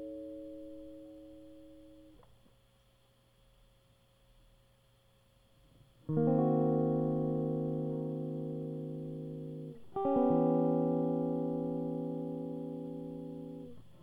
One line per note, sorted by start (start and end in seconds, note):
6.09 9.71 D#3
6.17 9.71 A#3
6.28 9.71 C4
6.39 9.29 F#4
9.97 13.60 G4
10.06 13.60 C#4
10.17 13.68 B3
10.29 13.62 E3